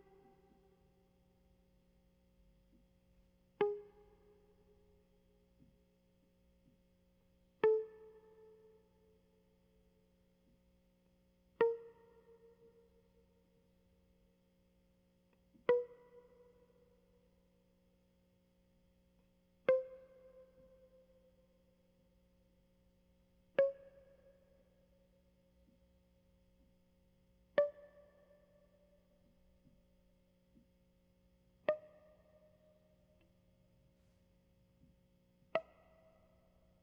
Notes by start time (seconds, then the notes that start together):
3.61 G#4
7.64 A4
11.61 A#4
15.69 B4
19.69 C5
23.59 C#5
27.58 D5
31.69 D#5
35.55 E5